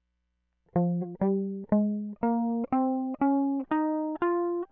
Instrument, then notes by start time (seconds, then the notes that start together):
electric guitar
0.77 F3
1.23 F#3
1.27 G3
1.73 G#3
2.24 A#3
2.73 C4
3.22 C#4
3.72 D#4
4.22 F4